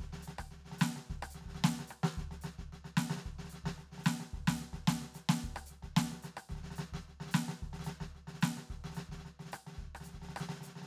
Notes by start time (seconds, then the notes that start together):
0.01 kick, snare
0.07 kick
0.14 snare
0.19 snare
0.24 hi-hat pedal
0.29 snare
0.40 kick, cross-stick
0.52 snare
0.58 snare
0.63 snare
0.66 snare
0.73 snare
0.78 snare, hi-hat pedal
0.82 snare
0.97 snare
1.11 kick, snare
1.17 kick
1.24 cross-stick
1.31 hi-hat pedal
1.36 snare
1.42 snare
1.47 kick, snare
1.56 snare
1.61 snare
1.65 snare
1.80 snare
1.89 cross-stick, hi-hat pedal
2.04 snare
2.18 kick, snare
2.25 kick
2.32 snare
2.42 snare, hi-hat pedal
2.59 kick, snare
2.74 snare
2.86 snare
2.98 snare, hi-hat pedal
3.11 snare
3.18 snare
3.26 kick, snare
3.33 kick
3.40 snare
3.45 snare
3.51 snare, hi-hat pedal
3.54 snare
3.65 kick, snare
3.79 snare
3.86 snare
3.91 snare
3.93 snare
3.99 snare
4.05 snare, hi-hat pedal
4.07 snare
4.21 snare
4.34 kick, snare
4.41 kick
4.49 snare
4.57 hi-hat pedal
4.61 snare
4.74 kick, snare
4.89 snare
5.03 snare
5.15 snare, hi-hat pedal
5.30 snare
5.45 kick, snare
5.51 kick
5.57 cross-stick
5.67 hi-hat pedal
5.71 snare
5.84 kick, snare
5.98 snare
6.13 snare
6.24 snare, hi-hat pedal
6.38 cross-stick
6.50 kick, snare
6.56 kick, snare
6.61 snare
6.64 snare
6.77 snare, hi-hat pedal
6.94 kick, snare
7.09 snare
7.21 snare
7.27 snare
7.32 snare, hi-hat pedal
7.49 snare
7.63 kick, snare
7.70 kick
7.74 snare
7.81 snare
7.85 snare, hi-hat pedal
8.01 kick, snare
8.16 snare
8.28 snare
8.35 snare
8.41 snare, hi-hat pedal
8.44 snare
8.58 snare
8.71 kick, snare
8.77 kick
8.85 snare
8.91 snare
8.96 snare, hi-hat pedal
9.10 kick, snare
9.15 kick, snare
9.26 snare
9.40 snare
9.46 snare
9.52 cross-stick, snare, hi-hat pedal
9.68 snare
9.73 snare
9.77 kick, snare
9.82 snare
9.96 cross-stick
10.01 snare, hi-hat pedal
10.07 snare
10.14 kick, snare
10.20 snare
10.23 snare
10.30 snare
10.37 cross-stick, snare
10.50 snare
10.55 snare
10.62 snare, hi-hat pedal
10.68 snare
10.74 snare
10.77 snare
10.83 snare